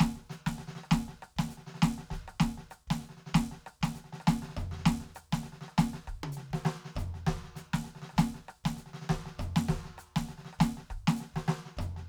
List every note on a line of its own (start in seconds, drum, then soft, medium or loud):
0.01 kick soft
0.01 snare loud
0.17 snare soft
0.31 snare medium
0.31 hi-hat pedal soft
0.47 kick soft
0.47 snare medium
0.59 snare medium
0.69 snare medium
0.76 snare medium
0.84 cross-stick medium
0.92 kick soft
0.92 snare loud
0.92 hi-hat pedal soft
0.98 kick soft
1.09 snare soft
1.23 cross-stick medium
1.37 kick soft
1.37 snare loud
1.50 snare soft
1.50 hi-hat pedal medium
1.58 snare soft
1.67 snare soft
1.67 snare medium
1.75 snare medium
1.83 kick soft
1.83 snare loud
1.99 snare medium
2.11 kick soft
2.11 snare medium
2.11 hi-hat pedal soft
2.20 kick soft
2.29 cross-stick medium
2.41 kick soft
2.41 snare loud
2.59 snare soft
2.71 cross-stick medium
2.71 hi-hat pedal soft
2.88 kick soft
2.88 snare loud
3.01 snare soft
3.10 snare soft
3.18 snare soft
3.27 snare medium
3.35 kick soft
3.35 snare loud
3.35 hi-hat pedal medium
3.40 kick soft
3.52 snare soft
3.67 cross-stick medium
3.82 kick soft
3.82 snare loud
3.96 snare soft
3.96 hi-hat pedal soft
4.05 snare soft
4.14 snare medium
4.21 cross-stick medium
4.28 kick soft
4.28 snare loud
4.43 snare medium
4.50 snare soft
4.58 kick soft
4.58 floor tom loud
4.58 hi-hat pedal soft
4.66 kick soft
4.72 snare medium
4.79 snare soft
4.86 kick soft
4.86 snare loud
5.01 snare soft
5.07 snare soft
5.12 snare soft
5.12 hi-hat pedal medium
5.17 cross-stick medium
5.33 kick soft
5.33 snare loud
5.44 snare soft
5.53 snare soft
5.62 snare medium
5.69 cross-stick medium
5.72 cross-stick soft
5.79 kick soft
5.79 snare loud
5.79 hi-hat pedal medium
5.94 snare medium
6.08 kick soft
6.08 cross-stick medium
6.17 kick soft
6.24 high tom loud
6.33 hi-hat pedal medium
6.38 snare medium
6.51 kick soft
6.51 snare loud
6.66 snare loud
6.86 snare medium
6.96 kick soft
6.96 floor tom loud
6.96 hi-hat pedal medium
7.03 kick soft
7.06 kick soft
7.15 snare soft
7.28 kick soft
7.28 snare loud
7.45 snare soft
7.57 snare medium
7.57 hi-hat pedal medium
7.74 kick soft
7.74 snare loud
7.85 snare soft
7.96 snare soft
8.03 snare medium
8.10 cross-stick medium
8.10 snare soft
8.18 kick soft
8.18 snare loud
8.18 hi-hat pedal medium
8.35 snare soft
8.49 cross-stick medium
8.65 kick soft
8.65 snare loud
8.78 snare soft
8.78 hi-hat pedal soft
8.87 snare soft
8.94 snare medium
9.02 snare medium
9.10 kick soft
9.10 snare loud
9.27 snare medium
9.40 kick soft
9.40 floor tom loud
9.40 hi-hat pedal soft
9.46 kick soft
9.57 snare loud
9.70 kick soft
9.70 snare loud
9.77 kick soft
9.85 snare soft
9.99 cross-stick medium
9.99 hi-hat pedal medium
10.17 kick soft
10.17 snare loud
10.30 snare soft
10.39 snare soft
10.46 snare medium
10.54 cross-stick medium
10.60 kick soft
10.60 snare loud
10.60 hi-hat pedal medium
10.78 snare soft
10.91 kick soft
10.91 cross-stick medium
11.00 kick soft
11.08 snare loud
11.17 hi-hat pedal medium
11.21 snare medium
11.35 kick soft
11.35 snare medium
11.49 snare loud
11.66 snare soft
11.78 kick soft
11.78 floor tom loud
11.78 hi-hat pedal medium
11.97 snare soft